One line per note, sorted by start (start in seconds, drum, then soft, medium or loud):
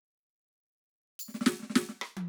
1.20 percussion loud
1.29 snare soft
1.35 snare medium
1.41 snare medium
1.47 snare loud
1.60 snare soft
1.63 snare medium
1.70 snare medium
1.76 snare loud
1.89 snare medium
2.02 high tom loud
2.17 high tom loud